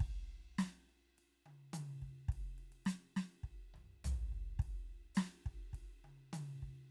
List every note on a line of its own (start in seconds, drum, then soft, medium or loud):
0.01 kick soft
0.01 ride soft
0.25 ride soft
0.59 snare medium
0.59 hi-hat pedal medium
0.59 ride soft
0.90 ride soft
1.19 ride soft
1.47 high tom soft
1.47 ride soft
1.74 hi-hat pedal medium
1.74 high tom medium
1.74 ride medium
2.03 kick soft
2.03 ride soft
2.29 kick soft
2.29 ride soft
2.59 ride soft
2.73 ride soft
2.86 snare medium
2.86 hi-hat pedal medium
2.86 ride soft
3.17 snare medium
3.17 ride soft
3.44 kick soft
3.44 ride soft
3.75 floor tom soft
3.75 ride soft
4.05 floor tom medium
4.05 hi-hat pedal medium
4.05 ride medium
4.32 kick soft
4.32 ride soft
4.60 kick soft
4.60 ride soft
4.85 ride soft
5.16 snare medium
5.16 hi-hat pedal medium
5.16 ride medium
5.45 kick soft
5.45 ride soft
5.74 kick soft
5.74 ride soft
6.05 high tom soft
6.05 ride soft
6.34 hi-hat pedal medium
6.34 high tom medium
6.34 ride medium
6.63 kick soft
6.63 ride soft